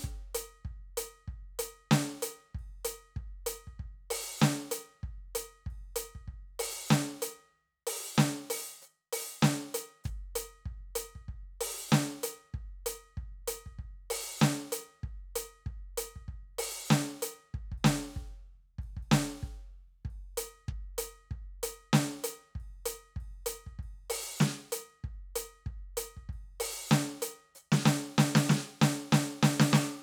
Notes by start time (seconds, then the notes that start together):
0.01 kick, hi-hat pedal
0.35 closed hi-hat
0.65 kick
0.97 closed hi-hat
1.28 kick
1.59 closed hi-hat
1.91 snare
2.23 closed hi-hat
2.55 kick
2.59 crash
2.85 closed hi-hat
3.16 kick
3.46 closed hi-hat
3.67 kick
3.80 kick
4.11 open hi-hat
4.40 snare, hi-hat pedal
4.71 closed hi-hat
5.03 kick
5.35 closed hi-hat
5.66 kick
5.70 crash
5.96 closed hi-hat
6.15 kick
6.28 kick
6.60 open hi-hat
6.90 snare, hi-hat pedal
7.22 closed hi-hat
7.87 open hi-hat
8.18 snare, hi-hat pedal
8.50 open hi-hat
8.82 hi-hat pedal
9.13 open hi-hat
9.41 snare, hi-hat pedal
9.74 open hi-hat
10.04 kick, hi-hat pedal
10.36 closed hi-hat
10.66 kick
10.96 closed hi-hat
11.15 kick
11.29 kick
11.61 open hi-hat
11.91 snare, hi-hat pedal
12.23 closed hi-hat
12.54 kick
12.86 closed hi-hat
13.17 kick
13.48 closed hi-hat
13.66 kick
13.79 kick
14.10 open hi-hat
14.41 snare, hi-hat pedal
14.72 closed hi-hat
15.04 kick
15.36 closed hi-hat
15.66 kick
15.98 closed hi-hat
16.16 kick
16.28 kick
16.59 open hi-hat
16.90 snare, hi-hat pedal
17.22 closed hi-hat
17.54 kick
17.72 kick
17.78 crash
17.85 snare
18.16 kick
18.79 kick, snare, crash
18.84 ride
18.97 kick
19.03 crash, ride
19.12 snare
19.43 kick
20.05 kick
20.10 crash
20.38 closed hi-hat
20.68 kick
20.98 closed hi-hat
21.31 kick
21.63 open hi-hat
21.93 snare, hi-hat pedal
22.24 closed hi-hat
22.55 kick
22.60 crash
22.86 closed hi-hat
23.16 kick
23.20 crash
23.46 closed hi-hat
23.67 kick
23.79 kick
23.83 crash
24.10 open hi-hat
24.40 snare, hi-hat pedal
24.72 closed hi-hat
25.04 kick
25.36 closed hi-hat
25.66 kick
25.97 closed hi-hat
26.17 kick
26.29 kick, crash
26.60 open hi-hat
26.91 snare, hi-hat pedal
27.22 closed hi-hat
27.55 hi-hat pedal
27.72 snare
27.86 snare
28.18 snare
28.35 snare
28.50 snare
28.82 snare
29.12 snare
29.43 snare
29.60 snare
29.73 snare